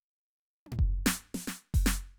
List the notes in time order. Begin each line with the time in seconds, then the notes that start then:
0.66 high tom
0.72 floor tom
0.79 kick
1.06 snare
1.34 snare
1.47 snare
1.74 open hi-hat, kick
1.86 snare, hi-hat pedal
2.00 snare